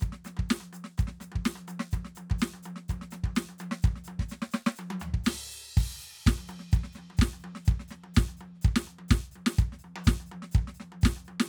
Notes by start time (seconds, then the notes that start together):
0.01 kick, hi-hat pedal, high tom
0.13 snare
0.25 snare, hi-hat pedal, high tom
0.38 kick, high tom
0.50 snare, hi-hat pedal
0.61 high tom
0.73 hi-hat pedal, high tom
0.85 snare
0.98 kick, hi-hat pedal, high tom
1.08 snare
1.21 snare, hi-hat pedal, high tom
1.33 kick, high tom
1.46 snare, hi-hat pedal
1.56 high tom
1.68 hi-hat pedal, high tom
1.80 snare
1.92 kick, hi-hat pedal, high tom
2.06 snare
2.16 hi-hat pedal, high tom
2.31 kick, high tom
2.39 snare, hi-hat pedal
2.54 high tom
2.64 hi-hat pedal, high tom
2.77 snare
2.89 kick, hi-hat pedal, high tom
3.02 snare
3.11 snare, hi-hat pedal, high tom
3.24 kick, high tom
3.36 snare, hi-hat pedal
3.50 high tom
3.59 hi-hat pedal, high tom
3.72 snare
3.83 kick, hi-hat pedal, high tom
3.97 snare
4.05 hi-hat pedal, high tom
4.20 kick, snare
4.29 snare, hi-hat pedal
4.43 snare
4.52 snare, hi-hat pedal
4.67 snare
4.76 hi-hat pedal, high tom
4.91 high tom
5.00 floor tom, hi-hat pedal
5.15 kick
5.25 snare, hi-hat pedal, crash
5.52 hi-hat pedal
5.78 kick, hi-hat pedal, crash, ride
6.01 hi-hat pedal
6.27 kick, snare, hi-hat pedal
6.39 high tom
6.48 hi-hat pedal, high tom
6.60 snare
6.72 kick, hi-hat pedal, high tom
6.84 snare
6.93 snare, hi-hat pedal
6.99 high tom
7.11 high tom
7.18 kick, hi-hat pedal
7.22 snare
7.34 high tom
7.40 hi-hat pedal
7.45 high tom
7.56 snare
7.66 kick, hi-hat pedal
7.70 high tom
7.80 snare
7.89 snare, hi-hat pedal
7.93 high tom
8.04 high tom
8.15 kick, snare, hi-hat pedal
8.29 high tom
8.38 hi-hat pedal, high tom
8.56 snare
8.62 kick, hi-hat pedal, high tom
8.77 snare
8.84 hi-hat pedal, high tom
8.99 high tom
9.09 kick, snare, hi-hat pedal
9.32 hi-hat pedal
9.36 high tom
9.47 snare
9.57 kick, hi-hat pedal, high tom
9.73 snare
9.80 hi-hat pedal
9.85 high tom
9.97 high tom
10.05 kick, snare, hi-hat pedal
10.21 high tom
10.27 hi-hat pedal
10.32 high tom
10.43 snare
10.52 kick, hi-hat pedal
10.57 high tom
10.68 snare
10.75 hi-hat pedal
10.81 snare, high tom
10.93 high tom
11.02 kick, snare, hi-hat pedal
11.17 high tom
11.25 hi-hat pedal, high tom
11.41 snare